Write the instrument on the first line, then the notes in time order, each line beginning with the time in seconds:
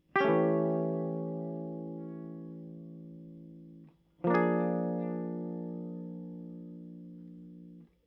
electric guitar
0.16 G4
0.21 C#4
0.25 A3
0.29 E3
4.25 F3 A#3
4.30 D4
4.34 G#4